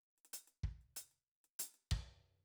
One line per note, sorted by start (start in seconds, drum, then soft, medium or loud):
0.18 closed hi-hat soft
0.25 closed hi-hat soft
0.33 closed hi-hat medium
0.48 closed hi-hat soft
0.63 kick soft
0.81 closed hi-hat soft
0.96 closed hi-hat medium
1.11 closed hi-hat soft
1.44 closed hi-hat soft
1.59 closed hi-hat loud
1.74 closed hi-hat soft
1.91 kick soft
1.91 floor tom loud